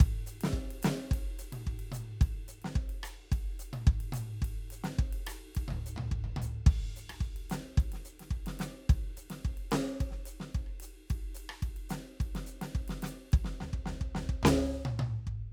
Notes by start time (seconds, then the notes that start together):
0.01 kick, ride
0.27 hi-hat pedal, ride
0.42 snare, ride
0.54 kick
0.72 ride
0.83 kick, snare, hi-hat pedal, ride
1.12 kick, ride
1.39 kick, hi-hat pedal, ride
1.53 high tom, ride
1.68 kick
1.80 ride
1.93 kick, hi-hat pedal, high tom, ride
2.22 kick, ride
2.49 kick, hi-hat pedal, ride
2.63 snare, ride
2.76 kick
2.90 ride
3.04 kick, cross-stick, hi-hat pedal, ride
3.33 kick, ride
3.60 hi-hat pedal, ride
3.74 high tom, ride
3.88 kick
4.01 ride
4.13 hi-hat pedal, high tom, ride
4.43 kick, ride
4.71 hi-hat pedal, ride
4.85 snare, ride
5.00 kick
5.14 ride
5.28 cross-stick, hi-hat pedal, ride
5.56 kick, ride
5.69 floor tom, high tom
5.87 hi-hat pedal
5.97 floor tom, high tom
6.12 kick
6.25 floor tom
6.37 floor tom, high tom
6.43 hi-hat pedal
6.67 kick, hi-hat pedal, ride
6.97 hi-hat pedal, ride
7.10 cross-stick, ride
7.21 kick, hi-hat pedal
7.37 ride
7.51 snare, hi-hat pedal, ride
7.78 kick, ride
7.93 snare, ride
8.06 hi-hat pedal
8.20 snare, ride
8.31 kick, hi-hat pedal
8.47 snare, ride
8.60 snare, hi-hat pedal, ride
8.90 kick, ride
9.05 snare
9.18 kick, hi-hat pedal, ride
9.31 snare, ride
9.43 kick, hi-hat pedal
9.58 ride
9.72 snare, hi-hat pedal, ride
9.86 snare
10.01 kick, ride
10.12 snare
10.27 hi-hat pedal, ride
10.41 snare
10.55 kick, ride
10.67 cross-stick
10.81 hi-hat pedal, ride
11.08 kick, hi-hat pedal, ride
11.21 snare
11.35 hi-hat pedal, ride
11.50 cross-stick
11.63 kick, ride
11.77 ride
11.90 snare, hi-hat pedal, ride
12.07 snare
12.21 kick, ride
12.36 snare, ride
12.47 hi-hat pedal
12.62 snare, ride
12.76 kick
12.89 snare, ride
13.03 snare, hi-hat pedal, ride
13.33 kick, ride
13.45 snare
13.61 snare, floor tom
13.74 kick
13.87 snare, floor tom
14.02 kick
14.16 snare, floor tom
14.30 kick
14.44 snare, floor tom
14.86 high tom
15.00 high tom
15.28 kick